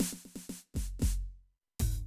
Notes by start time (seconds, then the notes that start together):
0.00 snare, hi-hat pedal
0.12 snare
0.25 snare
0.36 snare
0.49 snare
0.74 kick, snare
0.76 snare
0.99 kick, snare
1.02 snare
1.80 open hi-hat, kick, floor tom